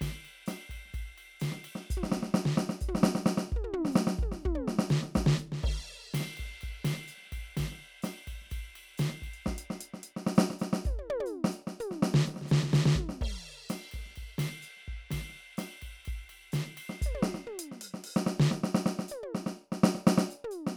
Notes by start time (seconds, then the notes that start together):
0.01 kick, snare, ride
0.07 kick
0.25 ride
0.46 snare, hi-hat pedal, ride
0.70 kick, ride
0.75 kick
0.86 snare
0.90 kick, snare, hi-hat pedal, ride
1.00 kick
1.18 ride
1.40 snare, hi-hat pedal, ride
1.52 snare
1.64 ride
1.76 snare
1.90 kick, hi-hat pedal
1.97 kick, floor tom
2.04 snare
2.12 kick, snare
2.23 snare
2.34 snare
2.46 snare
2.53 hi-hat pedal
2.58 snare
2.69 snare
2.81 kick, hi-hat pedal
2.88 floor tom
2.95 snare
3.02 kick, snare
3.15 snare
3.21 hi-hat pedal
3.26 snare
3.38 snare
3.52 kick, mid tom
3.59 kick
3.64 mid tom
3.73 floor tom
3.85 snare
3.92 kick, hi-hat pedal
3.96 snare
4.07 snare
4.17 kick, hi-hat pedal
4.22 mid tom
4.27 kick
4.32 snare
4.41 floor tom, hi-hat pedal
4.45 kick
4.55 high tom
4.62 kick
4.68 snare
4.79 snare
4.90 snare, hi-hat pedal
5.03 snare
5.15 kick, snare, hi-hat pedal
5.22 kick
5.27 snare
5.37 kick, hi-hat pedal
5.52 snare
5.63 kick, crash
5.68 kick, snare
6.14 snare, hi-hat pedal, ride
6.20 snare
6.37 kick, ride
6.42 snare
6.47 snare
6.51 snare
6.54 snare
6.61 kick, hi-hat pedal, ride
6.69 kick
6.85 snare, ride
6.94 snare
7.08 hi-hat pedal, ride
7.18 snare
7.23 snare
7.27 snare
7.32 kick, ride
7.38 kick
7.57 kick, snare, hi-hat pedal, ride
7.64 kick
7.72 snare
8.03 snare, hi-hat pedal, ride
8.27 kick, ride
8.33 kick
8.42 snare
8.47 snare, hi-hat pedal
8.51 kick, ride
8.57 kick
8.76 ride
8.98 snare, hi-hat pedal, ride
9.10 snare
9.22 kick, ride
9.27 kick
9.34 open hi-hat
9.43 snare, hi-hat pedal
9.47 kick
9.52 kick
9.58 closed hi-hat
9.70 snare
9.81 open hi-hat
9.94 snare
10.03 open hi-hat
10.17 snare
10.27 snare
10.36 snare, hi-hat pedal
10.50 snare
10.59 snare, hi-hat pedal
10.73 snare
10.85 kick, hi-hat pedal, high tom
10.93 kick
10.99 high tom
11.10 high tom
11.20 high tom
11.26 hi-hat pedal
11.44 snare
11.52 hi-hat pedal
11.67 snare
11.80 hi-hat pedal, mid tom
11.91 snare
12.03 snare
12.14 snare
12.26 snare, hi-hat pedal
12.34 snare
12.36 snare
12.42 snare
12.46 snare, hi-hat pedal
12.52 snare
12.63 snare
12.71 kick, snare, hi-hat pedal
12.86 snare
12.95 kick, floor tom
13.01 kick
13.09 snare
13.21 kick, crash
13.27 kick
13.33 snare
13.69 snare, hi-hat pedal, ride
13.92 kick, snare, ride
13.99 kick, snare
14.06 snare
14.11 snare
14.16 kick, hi-hat pedal, ride
14.23 kick
14.39 snare, ride
14.63 hi-hat pedal
14.77 snare
14.87 kick, ride
14.93 kick
15.11 kick, snare, hi-hat pedal, ride
15.18 kick
15.30 snare
15.58 snare, hi-hat pedal, ride
15.82 kick, ride
16.05 kick, hi-hat pedal, ride
16.29 ride
16.52 snare, hi-hat pedal, ride
16.65 snare
16.77 ride
16.90 snare
17.02 kick, hi-hat pedal
17.06 kick, high tom
17.11 kick
17.15 high tom
17.23 snare
17.35 snare
17.47 mid tom
17.59 closed hi-hat
17.72 snare
17.81 open hi-hat, hi-hat pedal
17.94 snare
18.04 open hi-hat
18.12 hi-hat pedal
18.16 snare
18.27 snare
18.38 kick, snare, hi-hat pedal
18.52 snare
18.64 snare
18.75 snare
18.86 snare
18.99 snare
19.09 hi-hat pedal, high tom
19.23 high tom
19.35 snare
19.47 snare
19.55 hi-hat pedal
19.72 snare
19.84 snare
19.95 snare
20.07 snare, hi-hat pedal
20.18 snare
20.31 hi-hat pedal
20.44 mid tom
20.51 hi-hat pedal
20.67 snare